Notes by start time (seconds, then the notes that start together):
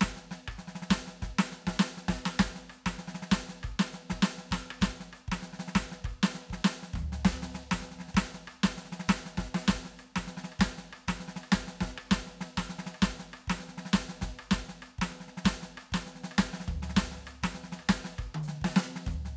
0.01 kick, snare
0.17 snare
0.31 snare, hi-hat pedal
0.48 kick, cross-stick
0.58 snare
0.68 snare
0.75 snare
0.82 snare
0.90 kick, snare, hi-hat pedal
1.07 snare
1.22 kick, snare
1.31 kick
1.39 snare
1.49 snare, hi-hat pedal
1.67 kick, snare
1.79 snare
1.97 snare
2.08 kick, snare, hi-hat pedal
2.26 snare
2.39 kick, snare
2.45 kick
2.55 snare
2.70 cross-stick, hi-hat pedal
2.86 kick, snare
2.98 snare
3.08 snare
3.15 snare
3.22 snare
3.31 kick, snare, hi-hat pedal
3.49 snare
3.63 kick, cross-stick
3.72 kick
3.79 snare
3.92 snare, hi-hat pedal
4.10 kick, snare
4.22 snare
4.38 snare
4.51 kick, snare, hi-hat pedal
4.71 cross-stick
4.82 kick, snare
4.88 kick
4.91 kick
5.00 snare
5.13 cross-stick, hi-hat pedal
5.28 kick, snare
5.42 snare
5.53 snare
5.59 snare
5.68 snare
5.75 kick, snare, hi-hat pedal
5.81 kick
5.92 snare
6.04 kick, cross-stick
6.11 kick
6.13 kick
6.23 snare
6.31 snare, hi-hat pedal
6.50 kick, snare
6.64 snare
6.83 snare
6.94 kick, floor tom, hi-hat pedal
7.12 snare
7.25 kick, snare
7.31 kick
7.42 snare
7.54 snare, hi-hat pedal
7.71 kick, snare
7.82 snare
7.91 snare
7.98 snare
8.00 snare
8.08 snare
8.15 kick, snare, hi-hat pedal
8.34 snare
8.47 cross-stick
8.63 kick, snare
8.77 snare, hi-hat pedal
8.85 snare
8.92 snare
8.99 snare
9.08 kick, snare
9.26 snare
9.38 kick, snare, hi-hat pedal
9.55 snare
9.68 kick, snare
9.75 kick
9.85 snare
9.98 cross-stick, hi-hat pedal
10.16 kick, snare
10.27 snare
10.37 snare
10.44 snare
10.52 cross-stick
10.59 kick, snare, hi-hat pedal
10.65 kick
10.78 snare
10.93 cross-stick
11.08 kick, snare
11.20 snare, hi-hat pedal
11.28 snare
11.36 snare
11.43 cross-stick
11.52 kick, snare
11.68 snare
11.81 kick, snare, hi-hat pedal
11.98 cross-stick
12.11 kick, snare
12.27 snare
12.41 snare, hi-hat pedal
12.57 kick, snare
12.69 snare
12.79 snare
12.86 snare
12.95 cross-stick
13.02 kick, snare, hi-hat pedal
13.08 kick
13.19 snare
13.33 cross-stick
13.47 kick, snare
13.60 snare, hi-hat pedal
13.68 snare
13.77 snare
13.85 snare
13.93 kick, snare
14.09 snare
14.21 kick, snare, hi-hat pedal
14.30 kick
14.39 cross-stick
14.51 kick, snare
14.69 snare
14.82 cross-stick, hi-hat pedal
14.98 kick, snare
15.11 snare
15.20 snare
15.28 snare
15.37 snare
15.45 kick, snare, hi-hat pedal
15.51 kick
15.63 snare
15.77 cross-stick
15.92 kick, snare
16.06 snare, hi-hat pedal
16.15 snare
16.24 snare
16.31 cross-stick
16.38 kick, snare
16.53 snare
16.60 snare
16.68 kick, floor tom, hi-hat pedal
16.76 kick
16.82 snare
16.89 snare
16.96 kick, snare
17.11 snare
17.17 snare
17.22 snare, hi-hat pedal
17.27 cross-stick
17.43 kick, snare
17.54 snare
17.64 snare
17.72 snare
17.79 cross-stick
17.83 cross-stick
17.89 kick, snare, hi-hat pedal
18.04 snare
18.18 kick, cross-stick
18.27 kick
18.34 high tom
18.43 hi-hat pedal
18.48 snare
18.61 kick, snare
18.76 snare
18.96 snare
19.07 kick, floor tom, hi-hat pedal
19.13 kick
19.16 kick
19.25 snare